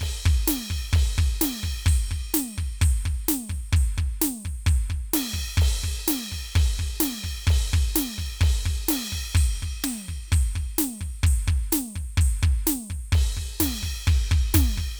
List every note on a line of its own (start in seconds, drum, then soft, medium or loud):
0.01 kick medium
0.01 crash medium
0.26 kick loud
0.48 snare loud
0.48 crash loud
0.70 kick medium
0.93 kick loud
0.93 crash medium
1.18 kick loud
1.41 snare loud
1.41 crash loud
1.63 kick medium
1.80 kick soft
1.86 open hi-hat loud
1.86 kick loud
2.11 kick medium
2.34 open hi-hat loud
2.34 snare loud
2.58 kick medium
2.81 open hi-hat loud
2.81 kick loud
3.05 kick medium
3.28 open hi-hat loud
3.28 snare loud
3.50 kick medium
3.73 open hi-hat loud
3.73 kick loud
3.98 kick medium
4.22 open hi-hat loud
4.22 snare loud
4.45 kick medium
4.66 open hi-hat medium
4.66 kick loud
4.90 kick medium
5.13 snare loud
5.13 crash loud
5.33 kick medium
5.57 kick loud
5.57 crash loud
5.84 kick medium
6.08 snare loud
6.08 crash loud
6.32 kick medium
6.55 kick loud
6.55 crash medium
6.79 kick medium
7.00 snare loud
7.00 crash loud
7.08 snare soft
7.24 kick medium
7.47 kick loud
7.47 crash loud
7.73 kick loud
7.96 snare loud
7.96 crash loud
8.18 kick medium
8.41 kick loud
8.41 crash loud
8.66 kick medium
8.88 snare loud
8.88 crash loud
9.12 kick medium
9.35 open hi-hat loud
9.35 kick loud
9.62 kick medium
9.84 open hi-hat loud
9.84 snare loud
10.08 kick medium
10.28 snare soft
10.32 open hi-hat loud
10.32 kick loud
10.55 kick medium
10.78 open hi-hat loud
10.78 snare loud
11.01 kick medium
11.23 open hi-hat loud
11.23 kick loud
11.48 kick loud
11.72 open hi-hat loud
11.72 snare loud
11.96 kick medium
12.17 open hi-hat loud
12.17 kick loud
12.43 kick loud
12.67 open hi-hat loud
12.67 snare loud
12.90 kick medium
13.12 kick loud
13.12 crash loud
13.37 kick medium
13.60 kick medium
13.60 snare loud
13.60 crash loud
13.83 kick medium
14.07 kick loud
14.07 crash medium
14.31 kick loud
14.54 kick loud
14.54 snare loud
14.54 crash medium
14.78 kick medium